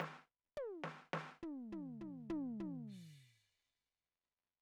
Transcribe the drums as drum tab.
CC |--------|--x-----|
HH |p-------|--------|
SD |o--go---|--------|
T1 |--o-----|--------|
FT |-----ogg|og------|